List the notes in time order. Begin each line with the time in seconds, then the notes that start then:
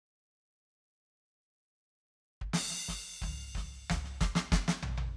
2.41 kick
2.53 snare, crash
2.70 snare
2.88 kick, snare
3.22 kick, mid tom
3.55 kick, snare, mid tom
3.90 kick, snare, mid tom
4.04 snare
4.21 kick, snare
4.35 snare
4.52 kick, snare
4.68 snare
4.80 kick, floor tom
4.98 floor tom